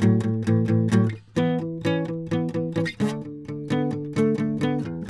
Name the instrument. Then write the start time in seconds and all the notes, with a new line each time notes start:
acoustic guitar
0.00 A2
0.04 F#3 G3
0.21 A2
0.27 F#3
0.48 A2 E3
0.68 A2 E3 A3
0.93 A2 F#3 G3
1.37 E3 B3 E4
1.60 E3
1.86 E3 C#4
2.10 E3
2.32 E3 B3
2.55 E3 B3
2.77 E3 C4
3.01 D3 A3 D4
3.23 D3
3.47 D3 A3
3.71 D3 B3
3.92 D3 B3
4.17 D3 A3 D4
4.39 D3 A3
4.62 D3 B3
4.87 E2